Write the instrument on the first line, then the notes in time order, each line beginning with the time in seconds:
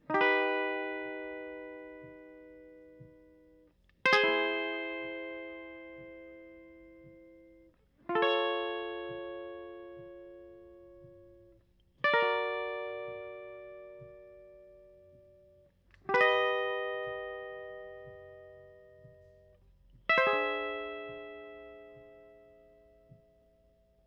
electric guitar
0.11 D#4
0.15 G4
0.22 B4
4.06 C5
4.14 G#4
4.24 E4
8.10 F4
8.16 A4
8.23 C#5
12.05 D5
12.14 A#4
12.23 F#4
16.10 G4
16.15 B4
16.21 D#5
20.10 E5
20.18 C5
20.27 G#4
20.37 D4